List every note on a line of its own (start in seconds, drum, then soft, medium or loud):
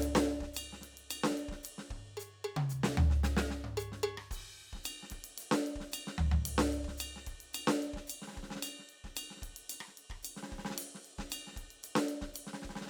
0.01 hi-hat pedal medium
0.01 ride medium
0.16 snare loud
0.41 kick soft
0.41 snare soft
0.54 hi-hat pedal medium
0.54 ride bell loud
0.73 snare soft
0.81 snare soft
0.81 ride medium
0.93 snare soft
0.98 snare soft
0.98 ride medium
1.10 hi-hat pedal medium
1.10 ride bell loud
1.24 snare medium
1.31 snare soft
1.38 ride soft
1.49 kick soft
1.49 snare soft
1.54 kick soft
1.64 hi-hat pedal medium
1.64 ride medium
1.78 snare soft
1.91 kick soft
1.91 mid tom medium
2.18 hi-hat pedal medium
2.18 percussion medium
2.45 percussion medium
2.57 high tom loud
2.70 floor tom soft
2.70 hi-hat pedal medium
2.84 snare loud
2.98 floor tom loud
3.10 snare soft
3.24 snare medium
3.24 hi-hat pedal medium
3.37 snare loud
3.51 snare soft
3.65 mid tom medium
3.78 hi-hat pedal medium
3.78 percussion loud
3.92 snare soft
4.04 percussion loud
4.18 cross-stick medium
4.31 kick soft
4.31 hi-hat pedal medium
4.31 crash medium
4.43 kick soft
4.73 kick soft
4.73 snare soft
4.78 kick soft
4.84 hi-hat pedal medium
4.84 ride bell loud
5.03 snare soft
5.10 kick soft
5.10 snare soft
5.10 ride medium
5.24 ride medium
5.38 hi-hat pedal medium
5.38 ride loud
5.52 snare loud
5.67 ride soft
5.76 kick soft
5.80 snare soft
5.92 hi-hat pedal medium
5.92 ride bell loud
6.07 snare medium
6.19 kick soft
6.19 floor tom medium
6.32 floor tom medium
6.46 hi-hat pedal medium
6.46 ride loud
6.58 snare loud
6.73 ride soft
6.85 kick soft
6.85 snare soft
6.98 hi-hat pedal medium
6.98 ride bell loud
7.16 snare soft
7.25 kick soft
7.25 cross-stick soft
7.25 ride medium
7.31 snare soft
7.41 ride medium
7.54 hi-hat pedal medium
7.54 ride bell loud
7.68 snare loud
7.83 ride soft
7.94 kick soft
7.94 snare soft
8.07 hi-hat pedal medium
8.07 ride bell loud
8.22 snare soft
8.28 snare soft
8.33 snare soft
8.36 kick soft
8.36 snare soft
8.43 kick soft
8.43 snare soft
8.48 snare soft
8.51 snare medium
8.56 snare medium
8.63 hi-hat pedal medium
8.63 ride bell loud
8.79 snare soft
8.89 ride soft
9.04 kick soft
9.04 snare soft
9.16 hi-hat pedal medium
9.16 ride bell loud
9.31 snare soft
9.37 snare soft
9.42 kick soft
9.42 snare soft
9.42 ride medium
9.49 snare soft
9.52 snare soft
9.57 ride medium
9.70 hi-hat pedal medium
9.70 ride bell loud
9.81 cross-stick medium
9.88 snare soft
9.98 ride medium
10.10 kick soft
10.10 cross-stick medium
10.16 kick soft
10.23 hi-hat pedal medium
10.23 ride bell medium
10.37 snare soft
10.43 snare soft
10.49 snare soft
10.51 kick soft
10.51 snare soft
10.59 snare soft
10.65 snare medium
10.71 snare medium
10.76 snare soft
10.76 ride loud
10.80 hi-hat pedal medium
10.95 snare soft
11.05 ride soft
11.19 kick soft
11.19 snare medium
11.30 hi-hat pedal medium
11.30 ride bell loud
11.47 snare soft
11.53 kick soft
11.53 snare soft
11.57 snare soft
11.57 ride medium
11.64 snare soft
11.71 ride soft
11.83 hi-hat pedal medium
11.83 ride medium
11.96 snare loud
12.09 ride medium
12.22 kick soft
12.22 snare soft
12.34 hi-hat pedal medium
12.34 ride loud
12.47 snare soft
12.54 snare soft
12.62 kick soft
12.62 snare soft
12.70 snare soft
12.76 snare medium
12.81 snare medium
12.86 snare soft